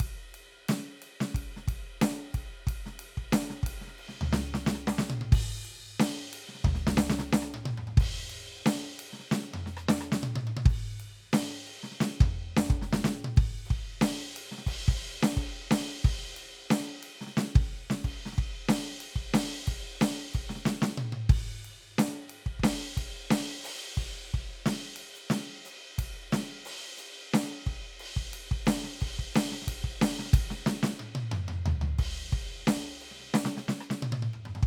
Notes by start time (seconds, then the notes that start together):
0.02 kick, ride
0.34 ride
0.69 snare, hi-hat pedal, ride
1.02 hi-hat pedal, ride
1.20 snare
1.34 kick, ride
1.56 snare
1.68 kick, hi-hat pedal, ride
2.01 snare, ride
2.34 kick, ride
2.67 kick, ride
2.86 snare
2.99 ride
3.17 kick
3.32 snare, ride
3.50 snare
3.63 kick, ride
3.81 snare
3.87 snare
3.98 ride
4.08 snare
4.14 snare
4.21 floor tom
4.33 snare
4.54 snare
4.66 snare
4.75 cross-stick
4.87 snare
4.98 snare
5.10 high tom
5.21 high tom
5.32 kick, crash
5.65 ride
6.00 snare, ride
6.33 ride
6.48 snare
6.54 snare
6.60 snare
6.64 kick, floor tom
6.74 snare
6.87 snare
6.97 snare
7.10 snare
7.19 snare
7.33 snare
7.42 cross-stick
7.54 high tom
7.66 high tom
7.78 mid tom
7.87 mid tom
7.97 kick, ride
8.30 ride
8.66 snare, ride
8.99 ride
9.12 snare
9.19 snare
9.31 snare
9.43 snare
9.54 mid tom
9.66 snare
9.77 cross-stick
9.88 snare
10.01 cross-stick
10.12 snare
10.23 high tom
10.36 high tom
10.47 high tom
10.57 high tom
10.66 kick, crash
11.00 ride
11.33 snare, ride
11.67 ride
11.83 snare
11.91 snare
12.00 snare
12.20 kick, mid tom
12.57 snare
12.70 kick, mid tom
12.81 snare
12.93 snare
13.04 snare
13.15 high tom
13.24 high tom
13.37 kick, crash
13.66 ride
13.70 kick
14.01 snare, ride
14.36 ride
14.51 snare
14.58 snare
14.67 kick, ride
14.88 kick, ride
15.23 snare
15.37 kick, ride
15.71 snare, ride
16.04 kick, ride
16.37 ride
16.70 snare, ride
17.03 ride
17.21 snare
17.27 snare
17.37 snare
17.55 kick, crash
17.90 snare
18.04 kick, ride
18.25 snare
18.32 snare
18.37 kick, ride
18.69 snare, ride
18.91 snare
19.00 ride
19.16 kick
19.34 snare, ride
19.67 kick, ride
20.01 snare, ride
20.34 kick, ride
20.49 snare
20.55 snare
20.82 snare
20.98 high tom
21.12 high tom
21.29 kick, crash
21.65 ride
21.98 snare, ride
22.30 ride
22.46 kick
22.59 kick
22.63 snare, ride
22.97 kick, ride
23.31 snare, ride
23.64 open hi-hat, ride
23.97 kick, hi-hat pedal, crash
24.32 kick, ride
24.66 snare, ride
24.96 ride
25.15 hi-hat pedal
25.30 snare, ride
25.65 hi-hat pedal, ride
25.98 kick, ride
26.32 snare, ride
26.65 open hi-hat, ride
26.98 hi-hat pedal, ride
27.34 snare, ride
27.66 kick, ride
28.00 ride
28.16 kick
28.33 ride
28.51 kick
28.66 snare, ride
28.83 snare
28.89 snare
28.94 snare
29.00 kick, ride
29.19 kick
29.35 snare, ride
29.51 snare
29.67 kick, ride
29.84 kick
30.01 snare, ride
30.19 snare
30.25 snare
30.33 kick, ride
30.50 snare
30.66 snare
30.83 snare
30.99 high tom
31.15 high tom
31.32 mid tom
31.48 mid tom
31.66 floor tom
31.81 floor tom
31.99 kick, ride
32.32 kick, ride
32.67 snare, ride
33.01 ride
33.11 snare
33.15 snare
33.19 snare
33.22 snare
33.26 snare
33.34 snare, hi-hat pedal
33.45 snare
33.57 snare
33.68 snare
33.81 cross-stick
33.90 snare
34.02 high tom
34.12 high tom
34.22 high tom
34.33 mid tom
34.45 mid tom
34.55 mid tom
34.63 kick